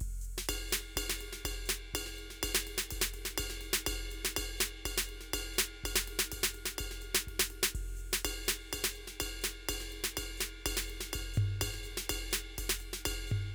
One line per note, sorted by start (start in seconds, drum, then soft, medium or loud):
0.01 kick soft
0.01 crash medium
0.09 kick soft
0.22 hi-hat pedal medium
0.38 snare medium
0.49 kick soft
0.49 ride bell loud
0.69 snare loud
0.69 hi-hat pedal medium
0.81 snare soft
0.97 kick soft
0.97 ride bell loud
1.03 kick soft
1.10 snare medium
1.19 hi-hat pedal medium
1.19 ride medium
1.33 snare medium
1.46 kick soft
1.46 ride bell loud
1.52 kick soft
1.66 snare loud
1.66 hi-hat pedal medium
1.95 kick soft
1.95 ride bell loud
2.00 kick soft
2.07 snare soft
2.16 hi-hat pedal medium
2.16 ride soft
2.31 snare soft
2.44 kick soft
2.44 ride bell loud
2.50 kick soft
2.55 snare loud
2.65 hi-hat pedal medium
2.65 ride medium
2.78 snare loud
2.91 kick soft
2.91 ride bell medium
2.99 kick soft
2.99 snare loud
3.14 hi-hat pedal medium
3.14 ride medium
3.26 snare medium
3.38 kick soft
3.38 ride bell loud
3.46 kick soft
3.50 snare medium
3.61 hi-hat pedal medium
3.61 ride medium
3.74 snare loud
3.87 kick soft
3.87 ride bell loud
3.94 kick soft
4.11 hi-hat pedal medium
4.11 ride medium
4.25 snare loud
4.37 kick soft
4.37 ride bell loud
4.44 kick soft
4.58 snare loud
4.58 hi-hat pedal medium
4.86 kick soft
4.86 ride bell loud
4.98 snare loud
5.06 hi-hat pedal medium
5.06 ride soft
5.21 snare soft
5.34 kick soft
5.34 ride bell loud
5.40 kick soft
5.54 hi-hat pedal medium
5.59 snare loud
5.84 kick soft
5.84 ride bell loud
5.96 snare loud
6.05 hi-hat pedal medium
6.05 ride medium
6.20 snare loud
6.32 kick soft
6.32 ride bell medium
6.39 kick soft
6.44 snare loud
6.54 hi-hat pedal medium
6.54 ride medium
6.66 snare medium
6.79 kick soft
6.79 ride bell loud
6.87 kick soft
6.92 snare soft
7.02 hi-hat pedal medium
7.02 ride soft
7.15 snare loud
7.28 kick soft
7.28 ride medium
7.40 snare loud
7.49 hi-hat pedal medium
7.49 ride medium
7.64 snare loud
7.75 kick soft
7.75 crash medium
7.81 kick soft
7.97 hi-hat pedal medium
8.14 snare loud
8.25 kick soft
8.25 ride bell loud
8.31 kick soft
8.46 snare loud
8.46 hi-hat pedal medium
8.73 kick soft
8.73 ride bell loud
8.80 kick soft
8.85 snare loud
8.94 hi-hat pedal medium
8.94 ride soft
9.08 snare medium
9.21 kick soft
9.21 ride bell loud
9.42 snare medium
9.42 hi-hat pedal medium
9.52 snare soft
9.69 kick soft
9.69 ride bell loud
9.76 kick soft
9.81 snare soft
9.90 hi-hat pedal medium
9.90 ride soft
10.04 snare medium
10.18 kick soft
10.18 ride bell loud
10.38 snare medium
10.38 hi-hat pedal medium
10.60 hi-hat pedal soft
10.66 kick soft
10.66 ride bell loud
10.72 kick soft
10.77 snare medium
10.86 hi-hat pedal medium
10.90 ride medium
11.01 snare medium
11.09 hi-hat pedal soft
11.14 kick soft
11.14 ride bell loud
11.22 kick soft
11.34 hi-hat pedal medium
11.34 floor tom loud
11.62 kick soft
11.62 ride bell loud
11.69 kick soft
11.74 snare soft
11.84 hi-hat pedal medium
11.84 ride soft
11.98 snare medium
12.07 hi-hat pedal soft
12.07 ride bell loud
12.11 kick soft
12.31 snare loud
12.31 hi-hat pedal medium
12.54 hi-hat pedal soft
12.59 kick soft
12.59 ride bell medium
12.65 kick soft
12.70 snare loud
12.79 hi-hat pedal medium
12.79 ride soft
12.94 snare medium
13.06 kick soft
13.06 ride bell loud
13.13 kick soft
13.28 hi-hat pedal medium
13.32 floor tom loud